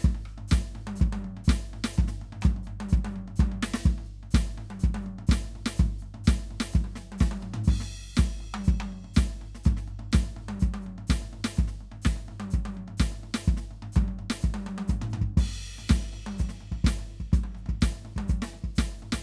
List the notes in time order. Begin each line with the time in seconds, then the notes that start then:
0.01 kick, hi-hat pedal
0.15 floor tom
0.22 cross-stick, hi-hat pedal
0.38 floor tom
0.48 snare, hi-hat pedal
0.53 kick
0.69 hi-hat pedal
0.75 floor tom
0.87 high tom
0.96 hi-hat pedal
1.00 kick, floor tom
1.13 hi-hat pedal, high tom
1.24 floor tom
1.37 floor tom
1.44 kick, hi-hat pedal
1.49 snare
1.66 hi-hat pedal
1.73 floor tom
1.84 snare
1.93 hi-hat pedal
1.98 kick, floor tom
2.08 snare
2.15 hi-hat pedal
2.21 floor tom
2.33 floor tom
2.41 kick, hi-hat pedal, high tom
2.56 floor tom
2.63 floor tom, hi-hat pedal
2.80 high tom
2.89 hi-hat pedal
2.93 kick, floor tom
3.05 high tom
3.11 hi-hat pedal
3.16 floor tom
3.28 floor tom
3.36 kick, hi-hat pedal
3.41 high tom
3.52 floor tom
3.63 snare
3.74 snare
3.82 kick, hi-hat pedal
3.98 floor tom
4.04 hi-hat pedal
4.23 floor tom
4.31 kick, snare, hi-hat pedal
4.47 floor tom
4.58 floor tom
4.70 high tom
4.79 hi-hat pedal
4.83 kick, floor tom
4.95 high tom
5.02 hi-hat pedal
5.06 floor tom
5.19 floor tom
5.27 kick, hi-hat pedal
5.32 snare
5.44 floor tom
5.55 floor tom
5.66 snare
5.77 kick, floor tom, hi-hat pedal
5.99 floor tom, hi-hat pedal
6.14 floor tom
6.24 kick, snare, hi-hat pedal
6.39 floor tom
6.46 hi-hat pedal
6.51 floor tom
6.60 snare
6.72 kick, floor tom, hi-hat pedal
6.84 high tom
6.93 snare, hi-hat pedal
7.12 high tom
7.18 kick, snare, hi-hat pedal
7.31 high tom
7.40 floor tom, hi-hat pedal
7.54 floor tom
7.64 kick, hi-hat pedal
7.68 crash
7.80 snare
8.15 snare, hi-hat pedal
8.19 kick
8.40 floor tom
8.54 high tom
8.64 kick, floor tom, hi-hat pedal
8.80 high tom
8.92 floor tom
9.04 floor tom
9.14 kick, snare, hi-hat pedal
9.30 floor tom
9.37 hi-hat pedal
9.42 floor tom
9.55 snare
9.64 kick, floor tom, hi-hat pedal
9.77 snare
9.86 floor tom, hi-hat pedal
9.99 floor tom
10.12 kick, snare, hi-hat pedal
10.24 floor tom
10.37 floor tom
10.49 high tom
10.60 kick, floor tom, hi-hat pedal
10.74 high tom
10.82 hi-hat pedal
10.87 floor tom
10.98 floor tom
11.07 kick, snare, hi-hat pedal
11.22 floor tom
11.30 floor tom, hi-hat pedal
11.44 snare
11.55 kick, floor tom, hi-hat pedal
11.68 snare
11.77 floor tom, hi-hat pedal
11.92 floor tom
12.02 snare, hi-hat pedal
12.06 kick
12.16 floor tom
12.24 floor tom, hi-hat pedal
12.40 high tom
12.51 kick, floor tom, hi-hat pedal
12.65 high tom
12.73 floor tom, hi-hat pedal
12.88 floor tom
12.97 kick, snare, hi-hat pedal
13.12 floor tom
13.23 floor tom
13.34 snare
13.44 kick, hi-hat pedal
13.48 floor tom
13.57 snare
13.66 hi-hat pedal
13.71 floor tom
13.83 floor tom
13.92 hi-hat pedal, high tom
13.97 kick
14.08 floor tom
14.19 floor tom
14.30 snare
14.41 kick, floor tom, hi-hat pedal
14.54 high tom
14.61 hi-hat pedal
14.67 high tom
14.78 high tom
14.88 kick, floor tom, hi-hat pedal
15.02 floor tom
15.10 floor tom, hi-hat pedal
15.22 kick
15.37 kick, hi-hat pedal, crash
15.61 hi-hat pedal
15.79 floor tom
15.88 kick, snare, hi-hat pedal
16.01 floor tom
16.12 floor tom, hi-hat pedal
16.27 high tom
16.39 kick, floor tom, hi-hat pedal
16.49 snare
16.59 floor tom, hi-hat pedal
16.72 kick, floor tom
16.84 kick, snare, hi-hat pedal
16.99 floor tom
17.07 hi-hat pedal
17.20 kick
17.32 kick, floor tom, hi-hat pedal
17.44 high tom
17.55 floor tom, hi-hat pedal
17.66 kick, floor tom
17.81 kick, snare, hi-hat pedal
17.93 floor tom
18.02 floor tom, hi-hat pedal
18.16 kick, high tom
18.28 kick, floor tom, hi-hat pedal
18.42 snare
18.50 floor tom, hi-hat pedal
18.64 kick
18.76 kick, snare, hi-hat pedal
18.92 floor tom
18.98 hi-hat pedal
19.02 floor tom
19.12 kick, snare